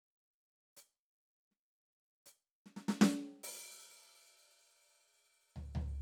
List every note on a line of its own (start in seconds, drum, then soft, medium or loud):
0.77 hi-hat pedal soft
1.51 snare soft
2.26 hi-hat pedal soft
2.66 snare soft
2.76 snare soft
2.88 snare medium
3.01 snare loud
3.43 open hi-hat loud
5.56 floor tom soft
5.75 floor tom medium